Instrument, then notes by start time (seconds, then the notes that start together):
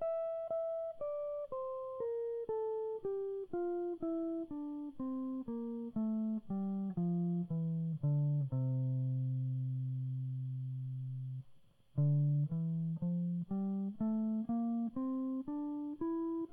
electric guitar
0.02 E5
0.51 E5
1.01 D5
1.52 C5
2.01 A#4
2.49 A4
3.05 G4
3.54 F4
4.03 E4
4.51 D4
5.00 C4
5.49 A#3
5.97 A3
6.51 G3
6.98 F3
7.52 E3
8.05 D3
8.54 C3
11.99 D3
12.53 E3
13.03 F3
13.52 G3
14.01 A3
14.50 A#3
14.97 C4
15.48 D4
16.02 E4